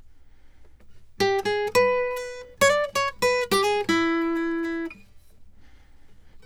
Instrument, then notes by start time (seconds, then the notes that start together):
acoustic guitar
1.21 G4
1.46 G#4
1.75 B4
2.62 D5
2.96 C#5
3.23 B4
3.52 G4
3.64 G#4
3.89 E4